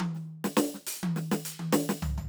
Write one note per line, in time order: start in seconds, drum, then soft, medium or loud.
0.00 high tom loud
0.15 snare soft
0.44 snare loud
0.57 snare loud
0.74 snare medium
0.87 closed hi-hat loud
1.03 high tom loud
1.16 snare medium
1.31 snare loud
1.45 closed hi-hat loud
1.59 high tom loud
1.73 snare loud
1.89 snare loud
2.02 floor tom loud
2.18 floor tom medium